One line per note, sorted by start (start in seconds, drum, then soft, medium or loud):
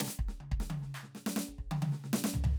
0.00 snare loud
0.08 snare medium
0.19 kick medium
0.28 snare medium
0.40 high tom medium
0.51 kick medium
0.60 snare medium
0.70 closed hi-hat soft
0.70 high tom loud
0.82 kick soft
0.82 snare soft
0.94 percussion medium
1.03 snare soft
1.15 snare medium
1.26 snare loud
1.36 snare loud
1.48 kick soft
1.58 kick soft
1.71 high tom loud
1.82 high tom loud
1.92 snare medium
2.04 snare medium
2.13 snare loud
2.24 snare loud
2.34 floor tom medium
2.44 floor tom loud